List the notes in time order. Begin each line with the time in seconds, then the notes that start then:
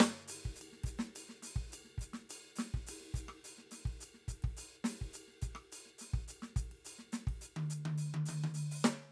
0.01 snare, hi-hat pedal
0.29 hi-hat pedal, ride
0.46 kick
0.57 hi-hat pedal
0.62 ride bell
0.73 snare
0.84 kick, hi-hat pedal, ride
0.99 snare, ride
1.16 hi-hat pedal, ride bell
1.30 snare
1.43 snare, hi-hat pedal, ride
1.57 kick, ride
1.73 hi-hat pedal, ride bell
1.85 snare
1.99 kick, hi-hat pedal, ride
2.14 snare, ride
2.30 hi-hat pedal, ride bell
2.56 snare, hi-hat pedal, ride
2.75 kick, snare
2.87 hi-hat pedal, ride
3.01 snare
3.15 kick, hi-hat pedal, ride
3.29 cross-stick, ride
3.45 hi-hat pedal, ride bell
3.59 snare
3.72 snare, hi-hat pedal, ride
3.86 kick, ride
4.01 hi-hat pedal, ride bell
4.15 snare
4.29 kick, hi-hat pedal, ride
4.43 kick, ride
4.57 hi-hat pedal, ride bell
4.85 snare, hi-hat pedal, ride
4.99 kick, ride
5.14 hi-hat pedal, ride bell
5.28 snare
5.42 kick, hi-hat pedal, ride
5.56 cross-stick, ride
5.73 hi-hat pedal, ride bell
5.86 snare
5.99 snare, hi-hat pedal, ride
6.14 kick, ride
6.29 hi-hat pedal, ride bell
6.43 snare
6.57 kick, hi-hat pedal, ride
6.72 ride
6.85 hi-hat pedal, ride bell
6.99 snare
7.13 snare, hi-hat pedal, ride
7.28 kick, ride
7.42 hi-hat pedal, ride bell
7.57 open hi-hat, high tom
7.71 hi-hat pedal
7.86 open hi-hat, high tom
7.98 hi-hat pedal
8.15 high tom
8.26 hi-hat pedal, high tom
8.44 high tom
8.55 hi-hat pedal
8.72 open hi-hat
8.85 snare, hi-hat pedal